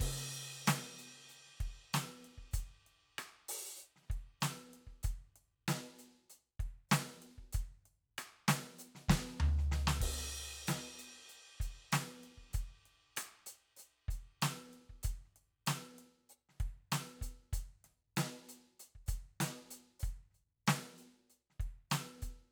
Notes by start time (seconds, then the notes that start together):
0.01 kick, crash
0.22 snare
0.28 snare
0.31 closed hi-hat, snare
0.35 snare
0.67 closed hi-hat, snare
0.99 closed hi-hat
1.24 snare
1.29 open hi-hat
1.47 snare
1.52 snare
1.61 kick, closed hi-hat
1.93 open hi-hat, snare, hi-hat pedal
2.25 closed hi-hat
2.38 kick
2.51 closed hi-hat, kick, hi-hat pedal
2.59 kick
2.87 closed hi-hat
3.19 closed hi-hat, cross-stick
3.47 open hi-hat, snare
3.78 closed hi-hat, hi-hat pedal
3.96 snare
4.03 snare
4.07 kick, snare
4.11 snare, closed hi-hat
4.41 closed hi-hat, snare, hi-hat pedal
4.74 closed hi-hat
4.87 kick, snare
5.03 closed hi-hat, kick
5.36 closed hi-hat
5.68 closed hi-hat, snare
5.91 snare
5.99 closed hi-hat
6.30 closed hi-hat
6.60 kick, closed hi-hat
6.89 closed hi-hat, snare, hi-hat pedal
6.99 snare
7.22 closed hi-hat
7.38 kick
7.53 closed hi-hat, kick
7.63 kick
7.86 closed hi-hat
8.18 closed hi-hat, cross-stick
8.48 closed hi-hat, snare
8.58 snare
8.79 hi-hat pedal
8.95 snare
9.09 kick, snare
9.15 kick
9.17 kick
9.28 snare
9.40 floor tom
9.58 snare
9.72 snare
9.87 snare
10.01 kick, crash
10.07 kick
10.19 snare
10.25 snare
10.28 snare
10.32 snare
10.37 closed hi-hat
10.68 closed hi-hat, snare
10.99 closed hi-hat
11.29 closed hi-hat
11.60 closed hi-hat, kick
11.92 closed hi-hat, snare
12.24 closed hi-hat
12.38 kick
12.50 closed hi-hat, snare
12.54 kick, snare
12.86 closed hi-hat
13.17 closed hi-hat, cross-stick
13.47 closed hi-hat
13.77 closed hi-hat, hi-hat pedal
14.09 closed hi-hat, kick
14.42 closed hi-hat, snare
14.73 closed hi-hat
14.90 kick
15.03 closed hi-hat, kick
15.25 snare
15.36 closed hi-hat
15.67 closed hi-hat, snare
15.99 closed hi-hat
16.30 open hi-hat
16.49 snare
16.53 snare
16.55 snare
16.60 kick, closed hi-hat
16.68 kick
16.92 closed hi-hat, snare
17.22 closed hi-hat, kick
17.53 closed hi-hat, kick
17.84 snare, closed hi-hat
18.17 closed hi-hat, snare
18.49 closed hi-hat
18.80 closed hi-hat
18.95 kick
19.07 closed hi-hat, kick, hi-hat pedal
19.40 closed hi-hat, snare
19.71 open hi-hat
20.00 kick, hi-hat pedal
20.04 closed hi-hat
20.31 closed hi-hat, snare
20.67 open hi-hat, snare
20.98 closed hi-hat
21.30 closed hi-hat
21.50 snare
21.60 kick, closed hi-hat
21.90 closed hi-hat, snare, hi-hat pedal
22.22 closed hi-hat, kick